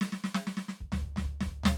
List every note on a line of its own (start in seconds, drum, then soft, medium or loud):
0.01 snare loud
0.12 snare medium
0.24 snare loud
0.34 snare medium
0.47 snare medium
0.57 snare medium
0.68 snare medium
0.80 kick soft
0.92 snare medium
0.92 floor tom loud
1.01 kick soft
1.16 snare medium
1.16 floor tom loud
1.24 kick soft
1.41 snare loud
1.41 floor tom medium
1.46 kick soft
1.63 snare loud
1.63 floor tom loud